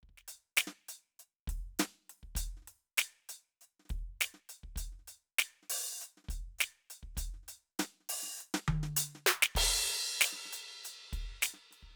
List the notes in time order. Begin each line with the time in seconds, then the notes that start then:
0.03 kick
0.09 kick
0.17 snare
0.27 closed hi-hat
0.56 open hi-hat, snare, hi-hat pedal
0.67 snare
0.88 closed hi-hat
1.19 open hi-hat, hi-hat pedal
1.47 kick, snare, closed hi-hat
1.78 open hi-hat, snare, hi-hat pedal
2.09 closed hi-hat
2.22 kick
2.35 closed hi-hat, kick
2.56 snare
2.62 snare
2.67 closed hi-hat
2.97 closed hi-hat, snare
3.28 closed hi-hat
3.60 open hi-hat, hi-hat pedal
3.79 snare
3.85 snare
3.89 kick, closed hi-hat
3.98 kick
4.20 open hi-hat, snare, hi-hat pedal
4.33 snare
4.49 closed hi-hat
4.63 kick
4.75 closed hi-hat, kick
4.92 snare
4.99 snare
5.07 closed hi-hat
5.38 closed hi-hat, snare
5.62 snare
5.69 open hi-hat
6.00 closed hi-hat, hi-hat pedal
6.17 snare
6.24 snare
6.28 closed hi-hat, kick
6.58 closed hi-hat, snare, hi-hat pedal
6.90 closed hi-hat
7.02 kick
7.14 closed hi-hat, kick, snare
7.33 snare
7.42 snare
7.48 closed hi-hat
7.79 closed hi-hat, snare
8.00 snare
8.09 open hi-hat
8.22 snare
8.27 snare
8.37 closed hi-hat, hi-hat pedal
8.54 snare
8.67 kick, high tom
8.74 kick
8.77 kick
8.83 snare
8.96 closed hi-hat
9.14 snare
9.26 snare
9.42 snare
9.55 kick, crash
9.63 kick
9.68 snare
9.87 closed hi-hat
10.20 open hi-hat, snare, hi-hat pedal
10.32 snare
10.45 snare
10.52 closed hi-hat
10.83 closed hi-hat, hi-hat pedal
11.12 kick, closed hi-hat
11.41 closed hi-hat, snare, hi-hat pedal
11.53 snare
11.70 snare, closed hi-hat
11.82 kick
11.90 snare